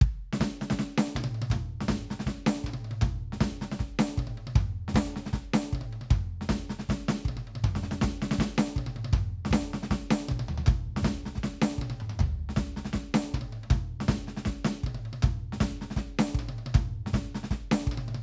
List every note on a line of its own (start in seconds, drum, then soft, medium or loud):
0.05 kick loud
0.33 snare loud
0.40 kick soft
0.40 snare loud
0.61 snare medium
0.70 kick soft
0.70 snare loud
0.79 snare medium
0.98 snare loud
1.15 kick soft
1.15 high tom loud
1.24 high tom loud
1.34 high tom medium
1.42 high tom loud
1.50 kick medium
1.50 mid tom loud
1.81 snare medium
1.88 kick medium
1.88 snare loud
2.10 snare medium
2.19 snare medium
2.26 kick medium
2.26 snare medium
2.46 snare loud
2.64 kick medium
2.64 high tom medium
2.74 high tom loud
2.84 high tom medium
2.91 high tom medium
3.01 kick medium
3.01 mid tom loud
3.32 snare medium
3.41 kick medium
3.41 snare loud
3.61 snare medium
3.72 snare medium
3.79 kick medium
3.79 snare medium
3.99 snare loud
4.17 kick medium
4.17 high tom loud
4.27 high tom medium
4.37 high tom medium
4.47 high tom medium
4.55 kick loud
4.55 mid tom loud
4.88 snare medium
4.94 kick medium
4.94 snare loud
5.16 snare medium
5.26 snare medium
5.33 kick medium
5.33 snare medium
5.53 snare loud
5.73 kick medium
5.73 high tom medium
5.81 high tom medium
5.91 snare soft
5.91 high tom medium
6.01 high tom medium
6.11 kick loud
6.11 mid tom loud
6.41 snare medium
6.49 kick medium
6.49 snare loud
6.69 snare medium
6.79 snare medium
6.89 kick medium
6.89 snare loud
7.08 snare loud
7.25 kick medium
7.25 high tom medium
7.37 high tom medium
7.47 high tom medium
7.55 high tom medium
7.64 kick medium
7.64 mid tom loud
7.75 snare medium
7.83 snare medium
7.91 snare medium
8.01 kick medium
8.01 snare loud
8.22 snare loud
8.31 snare loud
8.38 kick medium
8.38 snare loud
8.58 snare loud
8.76 kick medium
8.76 high tom loud
8.86 high tom loud
8.96 high tom medium
9.05 high tom loud
9.13 kick loud
9.13 mid tom loud
9.45 snare medium
9.51 kick medium
9.51 snare loud
9.73 snare medium
9.83 snare medium
9.91 kick medium
9.91 snare loud
10.11 snare loud
10.29 kick medium
10.29 high tom loud
10.39 high tom loud
10.48 floor tom loud
10.58 floor tom loud
10.66 kick loud
10.66 mid tom loud
10.96 snare medium
11.03 kick medium
11.03 snare loud
11.25 snare medium
11.35 kick medium
11.35 snare soft
11.43 snare loud
11.62 snare loud
11.78 kick medium
11.78 high tom loud
11.90 high tom loud
12.00 mid tom medium
12.10 mid tom medium
12.19 kick medium
12.19 floor tom loud
12.49 snare medium
12.56 kick medium
12.56 snare loud
12.76 snare medium
12.85 snare medium
12.93 kick medium
12.93 snare loud
13.14 snare loud
13.34 kick medium
13.34 high tom medium
13.41 high tom medium
13.52 high tom medium
13.63 high tom medium
13.70 kick loud
13.70 mid tom loud
14.00 snare medium
14.08 kick medium
14.08 snare loud
14.27 snare medium
14.37 snare medium
14.45 kick medium
14.45 snare loud
14.65 snare loud
14.83 kick medium
14.83 high tom medium
14.95 high tom medium
15.05 high tom medium
15.13 high tom medium
15.22 kick loud
15.22 mid tom loud
15.52 snare medium
15.60 kick medium
15.60 snare loud
15.81 snare medium
15.90 snare medium
15.96 kick medium
15.96 snare medium
16.19 snare loud
16.34 kick medium
16.39 high tom medium
16.49 high tom medium
16.58 high tom medium
16.66 high tom loud
16.74 kick loud
16.74 mid tom loud
17.06 snare medium
17.13 kick medium
17.13 snare loud
17.35 snare medium
17.43 snare medium
17.51 kick medium
17.51 snare medium
17.71 snare loud
17.87 kick medium
17.91 high tom medium
17.98 high tom loud
18.08 high tom medium
18.15 high tom loud